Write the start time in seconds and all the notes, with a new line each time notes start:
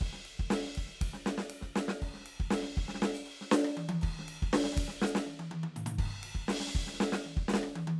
0.01 kick, ride
0.13 snare
0.18 snare
0.25 ride
0.39 kick
0.51 snare, ride
0.66 snare
0.75 kick, ride
0.87 snare
0.95 snare
1.01 kick, ride
1.14 snare
1.26 snare
1.38 snare
1.50 ride
1.62 kick, snare
1.76 snare
1.88 snare
2.02 kick, crash
2.14 snare
2.20 snare
2.26 ride
2.40 kick
2.51 snare, ride
2.63 snare
2.72 snare
2.76 kick, ride
2.88 snare
2.95 snare
3.02 snare
3.14 open hi-hat
3.26 ride
3.41 snare
3.52 snare
3.65 cross-stick
3.77 high tom
3.89 high tom
4.02 kick, crash
4.19 snare
4.28 ride
4.42 kick
4.53 snare, ride
4.64 snare
4.73 snare
4.77 kick, ride
4.88 snare
5.02 snare
5.06 hi-hat pedal
5.15 snare
5.27 high tom
5.39 high tom
5.51 high tom
5.64 high tom
5.76 mid tom
5.86 mid tom
5.99 kick, crash
6.23 ride
6.35 kick
6.48 snare, ride
6.60 snare
6.67 snare
6.75 kick, ride
6.87 snare
6.94 snare
7.00 snare
7.12 snare
7.26 high tom
7.37 kick
7.49 snare
7.54 snare
7.63 cross-stick
7.76 high tom
7.88 high tom